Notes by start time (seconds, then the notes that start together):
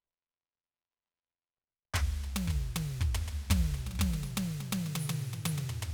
1.94 kick, percussion, floor tom
2.23 floor tom
2.36 high tom
2.47 kick, floor tom
2.76 mid tom
3.01 kick, floor tom
3.14 floor tom
3.28 floor tom
3.50 kick, floor tom, high tom
3.74 floor tom
3.86 high tom
3.91 high tom
3.95 kick, high tom
4.13 high tom
4.23 hi-hat pedal, high tom
4.37 high tom
4.46 hi-hat pedal
4.60 high tom
4.72 high tom
4.86 high tom
4.95 hi-hat pedal, mid tom
5.09 mid tom
5.33 mid tom
5.45 hi-hat pedal, mid tom
5.58 mid tom
5.69 floor tom
5.82 floor tom